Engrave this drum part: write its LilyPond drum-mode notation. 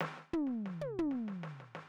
\new DrumStaff \drummode { \time 4/4 \tempo 4 = 125 \tuplet 3/2 { <hhp sn>8 sn8 tomfh8 sn8 sn8 tommh8 tomfh8 sn8 sn8 sn8 sn8 sn8 } | }